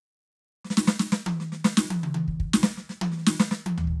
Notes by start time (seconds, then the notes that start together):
0.65 snare
0.71 snare
0.78 snare
0.88 snare
1.00 snare
1.13 snare
1.27 high tom
1.41 snare
1.53 snare
1.65 snare
1.78 snare
1.91 high tom
2.04 mid tom
2.15 high tom
2.28 kick
2.40 kick
2.54 snare
2.64 snare
2.78 snare
2.90 snare
3.02 high tom
3.12 snare
3.18 snare
3.22 snare
3.27 snare
3.40 snare
3.52 snare
3.67 high tom
3.78 floor tom
3.88 kick